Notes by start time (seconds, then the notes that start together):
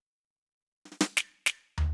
0.85 snare
0.92 snare
0.97 snare, hi-hat pedal
1.17 snare
1.46 snare, hi-hat pedal
1.78 floor tom